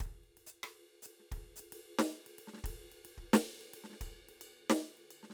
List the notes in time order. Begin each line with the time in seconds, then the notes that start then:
0.00 kick, hi-hat pedal, ride
0.23 ride
0.37 ride
0.46 hi-hat pedal
0.63 cross-stick, ride
1.02 hi-hat pedal, ride
1.19 snare
1.31 kick, ride
1.44 snare
1.56 hi-hat pedal, ride
1.72 ride
1.99 snare, ride
2.09 hi-hat pedal
2.26 ride
2.38 ride
2.47 snare
2.53 snare
2.57 snare
2.64 kick, ride
2.92 ride
3.05 ride
3.17 kick
3.33 snare, ride
3.61 ride
3.73 ride
3.84 snare
3.89 snare
3.92 snare
4.01 kick, ride bell
4.11 snare
4.14 snare
4.29 ride
4.41 ride bell
4.70 snare, ride
4.97 ride
5.10 ride bell
5.23 snare
5.30 snare